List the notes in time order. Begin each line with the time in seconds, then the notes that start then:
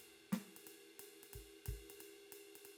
0.01 ride
0.33 snare, ride
0.58 ride
0.68 ride
1.01 ride
1.24 ride
1.36 kick
1.67 kick, ride
1.91 ride
2.02 ride
2.33 ride
2.57 ride
2.66 ride